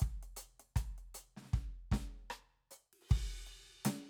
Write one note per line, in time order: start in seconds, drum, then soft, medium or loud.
0.01 kick medium
0.01 closed hi-hat medium
0.24 closed hi-hat soft
0.37 closed hi-hat medium
0.60 closed hi-hat soft
0.77 kick medium
0.77 cross-stick medium
0.77 closed hi-hat medium
0.99 closed hi-hat soft
1.15 closed hi-hat medium
1.37 snare soft
1.42 snare soft
1.46 snare soft
1.50 snare soft
1.53 kick medium
1.53 snare soft
1.92 kick medium
1.92 snare medium
1.92 ride soft
2.31 cross-stick medium
2.72 hi-hat pedal medium
2.94 crash soft
3.02 crash soft
3.10 kick medium
3.10 crash medium
3.47 closed hi-hat soft
3.86 snare medium
3.86 closed hi-hat loud